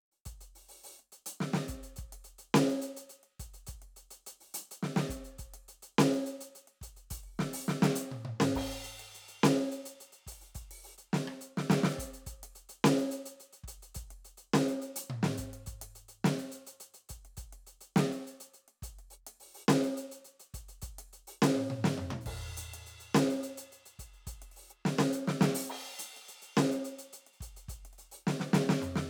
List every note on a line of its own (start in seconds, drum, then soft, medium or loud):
0.12 open hi-hat soft
0.25 closed hi-hat medium
0.25 kick soft
0.41 closed hi-hat soft
0.55 open hi-hat soft
0.69 open hi-hat medium
0.84 open hi-hat medium
0.99 closed hi-hat soft
1.12 closed hi-hat medium
1.26 closed hi-hat loud
1.40 snare medium
1.53 snare loud
1.63 hi-hat pedal soft
1.68 closed hi-hat medium
1.68 kick soft
1.83 closed hi-hat medium
1.96 closed hi-hat medium
1.96 kick soft
2.12 closed hi-hat medium
2.24 closed hi-hat medium
2.38 closed hi-hat medium
2.54 snare loud
2.69 closed hi-hat soft
2.82 closed hi-hat medium
2.97 closed hi-hat medium
3.09 closed hi-hat medium
3.23 closed hi-hat soft
3.39 closed hi-hat medium
3.39 kick soft
3.54 closed hi-hat soft
3.67 closed hi-hat medium
3.67 kick soft
3.82 closed hi-hat soft
3.96 closed hi-hat medium
4.11 closed hi-hat medium
4.26 closed hi-hat medium
4.40 open hi-hat soft
4.54 closed hi-hat loud
4.71 closed hi-hat medium
4.83 snare medium
4.96 snare loud
5.09 closed hi-hat medium
5.09 kick soft
5.24 closed hi-hat soft
5.38 closed hi-hat medium
5.38 kick soft
5.54 closed hi-hat medium
5.68 closed hi-hat medium
5.82 closed hi-hat medium
5.98 snare loud
6.13 closed hi-hat soft
6.26 closed hi-hat medium
6.41 closed hi-hat medium
6.55 closed hi-hat medium
6.67 closed hi-hat soft
6.81 closed hi-hat medium
6.81 kick soft
6.96 closed hi-hat soft
7.10 open hi-hat loud
7.10 kick soft
7.23 open hi-hat soft
7.39 snare medium
7.53 open hi-hat loud
7.68 snare medium
7.82 snare loud
7.95 closed hi-hat loud
8.11 high tom medium
8.25 high tom medium
8.40 snare loud
8.55 kick soft
8.55 crash loud
8.61 kick soft
8.64 kick soft
8.72 closed hi-hat soft
8.84 closed hi-hat medium
8.84 kick soft
8.99 closed hi-hat medium
9.15 closed hi-hat medium
9.28 closed hi-hat soft
9.43 snare loud
9.58 closed hi-hat soft
9.72 closed hi-hat medium
9.85 closed hi-hat medium
10.00 closed hi-hat soft
10.00 closed hi-hat medium
10.12 closed hi-hat soft
10.27 closed hi-hat medium
10.27 kick soft
10.32 open hi-hat medium
10.41 open hi-hat soft
10.55 open hi-hat medium
10.55 kick soft
10.71 open hi-hat medium
10.84 open hi-hat medium
10.98 closed hi-hat medium
11.13 snare loud
11.27 cross-stick medium
11.41 closed hi-hat medium
11.57 snare medium
11.70 snare loud
11.83 snare loud
11.89 hi-hat pedal medium
11.98 closed hi-hat medium
11.98 kick soft
12.04 kick soft
12.13 closed hi-hat medium
12.26 closed hi-hat medium
12.26 kick soft
12.43 closed hi-hat medium
12.55 closed hi-hat medium
12.69 closed hi-hat medium
12.84 snare loud
12.98 closed hi-hat soft
13.11 closed hi-hat medium
13.26 closed hi-hat medium
13.40 closed hi-hat soft
13.53 closed hi-hat medium
13.64 kick soft
13.68 closed hi-hat medium
13.82 closed hi-hat soft
13.95 closed hi-hat medium
13.95 kick soft
14.10 closed hi-hat soft
14.25 closed hi-hat medium
14.37 closed hi-hat soft
14.54 snare loud
14.68 closed hi-hat medium
14.82 closed hi-hat medium
14.96 closed hi-hat loud
15.10 high tom loud
15.23 snare loud
15.32 hi-hat pedal soft
15.38 closed hi-hat medium
15.38 kick soft
15.53 closed hi-hat medium
15.66 closed hi-hat medium
15.66 kick soft
15.81 closed hi-hat medium
15.95 closed hi-hat medium
16.08 closed hi-hat medium
16.24 snare loud
16.39 closed hi-hat soft
16.52 closed hi-hat medium
16.67 closed hi-hat medium
16.80 closed hi-hat medium
16.94 closed hi-hat soft
17.09 closed hi-hat medium
17.09 kick soft
17.25 closed hi-hat soft
17.37 closed hi-hat medium
17.37 kick soft
17.52 closed hi-hat soft
17.67 closed hi-hat medium
17.81 closed hi-hat medium
17.96 snare loud
18.12 closed hi-hat soft
18.27 closed hi-hat medium
18.40 closed hi-hat medium
18.54 closed hi-hat soft
18.68 closed hi-hat soft
18.82 closed hi-hat medium
18.82 kick soft
18.99 open hi-hat soft
19.10 open hi-hat medium
19.27 closed hi-hat medium
19.40 open hi-hat medium
19.54 open hi-hat medium
19.68 snare loud
19.83 closed hi-hat soft
19.97 closed hi-hat medium
20.11 closed hi-hat medium
20.25 closed hi-hat soft
20.40 closed hi-hat soft
20.54 closed hi-hat medium
20.54 kick soft
20.68 closed hi-hat soft
20.82 closed hi-hat medium
20.82 kick soft
20.98 closed hi-hat medium
21.13 open hi-hat medium
21.27 open hi-hat medium
21.42 snare loud
21.56 high tom medium
21.70 high tom medium
21.84 snare loud
21.98 mid tom medium
22.10 mid tom medium
22.21 hi-hat pedal soft
22.26 kick soft
22.26 crash medium
22.32 kick soft
22.57 closed hi-hat loud
22.74 closed hi-hat medium
22.86 closed hi-hat medium
23.00 closed hi-hat medium
23.15 snare loud
23.30 closed hi-hat soft
23.43 closed hi-hat medium
23.57 closed hi-hat medium
23.72 closed hi-hat soft
23.86 closed hi-hat soft
23.99 closed hi-hat medium
23.99 kick soft
24.13 closed hi-hat soft
24.27 closed hi-hat medium
24.27 kick soft
24.42 closed hi-hat soft
24.51 open hi-hat soft
24.56 open hi-hat medium
24.70 open hi-hat medium
24.70 hi-hat pedal soft
24.85 snare loud
24.99 snare loud
25.13 closed hi-hat medium
25.27 snare medium
25.41 snare loud
25.55 open hi-hat loud
25.69 crash medium
25.99 closed hi-hat loud
26.16 closed hi-hat soft
26.28 closed hi-hat medium
26.42 closed hi-hat medium
26.57 snare loud
26.71 closed hi-hat medium
26.85 closed hi-hat medium
26.99 closed hi-hat medium
27.13 closed hi-hat medium
27.27 closed hi-hat soft
27.33 closed hi-hat soft
27.40 closed hi-hat medium
27.40 kick soft
27.56 closed hi-hat soft
27.68 closed hi-hat medium
27.68 kick soft
27.85 closed hi-hat soft
27.93 open hi-hat soft
27.98 open hi-hat medium
28.11 open hi-hat medium
28.27 snare loud
28.40 snare medium
28.53 snare loud
28.69 snare loud
28.82 hi-hat pedal medium
28.82 mid tom medium
28.96 snare medium